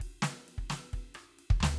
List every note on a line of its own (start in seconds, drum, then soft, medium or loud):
0.00 kick soft
0.00 ride medium
0.22 snare loud
0.22 ride soft
0.48 ride soft
0.58 kick soft
0.70 snare medium
0.70 ride medium
0.93 kick soft
0.93 ride soft
1.15 cross-stick medium
1.15 ride soft
1.24 snare soft
1.39 ride soft
1.50 kick medium
1.60 snare loud
1.60 floor tom loud